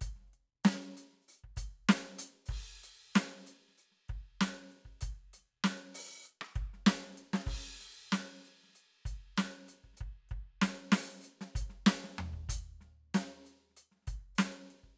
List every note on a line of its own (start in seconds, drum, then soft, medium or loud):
0.01 closed hi-hat medium
0.01 kick soft
0.07 kick soft
0.16 snare soft
0.18 snare soft
0.21 snare soft
0.27 snare soft
0.33 closed hi-hat soft
0.64 open hi-hat medium
0.64 snare loud
0.64 hi-hat pedal soft
0.74 snare soft
0.97 closed hi-hat soft
1.13 snare soft
1.16 snare soft
1.22 hi-hat pedal soft
1.28 open hi-hat soft
1.44 kick soft
1.56 closed hi-hat medium
1.56 kick soft
1.56 hi-hat pedal medium
1.89 closed hi-hat medium
1.89 snare loud
2.19 open hi-hat loud
2.46 kick soft
2.46 hi-hat pedal medium
2.50 crash medium
2.54 kick soft
2.83 closed hi-hat soft
3.15 closed hi-hat medium
3.15 snare loud
3.47 closed hi-hat soft
3.68 snare soft
3.78 open hi-hat soft
3.92 snare soft
4.09 kick soft
4.09 closed hi-hat soft
4.41 open hi-hat medium
4.41 snare loud
4.41 hi-hat pedal soft
4.72 closed hi-hat soft
4.85 kick soft
5.01 closed hi-hat medium
5.01 kick soft
5.12 kick soft
5.33 closed hi-hat soft
5.33 snare soft
5.64 closed hi-hat medium
5.64 snare loud
5.95 open hi-hat loud
6.23 closed hi-hat soft
6.23 hi-hat pedal soft
6.41 cross-stick medium
6.56 kick soft
6.56 closed hi-hat soft
6.62 kick soft
6.74 snare soft
6.86 snare loud
7.00 snare soft
7.18 closed hi-hat medium
7.33 snare medium
7.47 kick soft
7.47 crash medium
7.53 kick soft
7.56 kick soft
7.66 snare soft
7.71 snare soft
7.75 snare soft
7.80 closed hi-hat soft
7.80 snare soft
8.12 open hi-hat medium
8.12 snare medium
8.41 closed hi-hat soft
8.41 snare soft
8.63 snare soft
8.69 snare soft
8.73 closed hi-hat soft
8.73 snare soft
9.05 closed hi-hat soft
9.05 kick soft
9.13 kick soft
9.37 open hi-hat medium
9.37 snare medium
9.37 hi-hat pedal medium
9.68 closed hi-hat soft
9.84 kick soft
9.93 snare soft
9.97 open hi-hat medium
9.97 kick soft
9.97 snare soft
9.97 hi-hat pedal soft
10.29 kick soft
10.29 closed hi-hat soft
10.62 closed hi-hat medium
10.62 snare loud
10.92 open hi-hat loud
10.92 snare loud
11.21 closed hi-hat soft
11.21 hi-hat pedal medium
11.41 snare soft
11.55 closed hi-hat medium
11.55 kick soft
11.61 kick soft
11.64 kick soft
11.70 snare soft
11.86 snare loud
12.04 snare soft
12.18 floor tom medium
12.33 kick soft
12.49 closed hi-hat loud
12.49 kick soft
12.81 snare soft
12.81 closed hi-hat soft
13.14 closed hi-hat medium
13.14 snare loud
13.46 closed hi-hat soft
13.70 snare soft
13.77 closed hi-hat soft
13.92 snare soft
13.96 snare soft
13.99 snare soft
14.02 snare soft
14.07 closed hi-hat soft
14.07 kick soft
14.35 closed hi-hat medium
14.35 snare loud
14.35 hi-hat pedal soft
14.70 closed hi-hat soft
14.83 kick soft